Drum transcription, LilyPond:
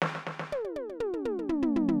\new DrumStaff \drummode { \time 4/4 \tempo 4 = 120 sn16 sn16 sn16 sn16 tommh16 tommh16 tommh16 tommh16 toml16 toml16 toml16 toml16 tomfh16 tomfh16 tomfh16 tomfh16 | }